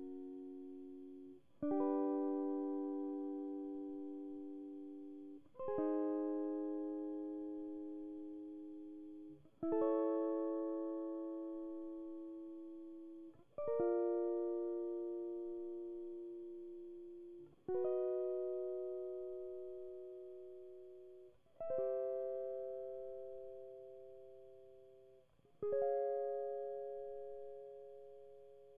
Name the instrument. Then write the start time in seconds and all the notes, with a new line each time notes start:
electric guitar
1.64 D4
1.72 G4
1.81 B4
5.60 C5
5.69 G#4
5.79 D#4
9.64 E4
9.73 A4
9.82 C#5
13.59 D5
13.68 A#4
13.81 F4
17.68 F#4
17.75 B4
17.86 D#5
21.61 E5
21.71 C5
21.79 G4
25.64 G#4
25.74 C#5
25.83 F5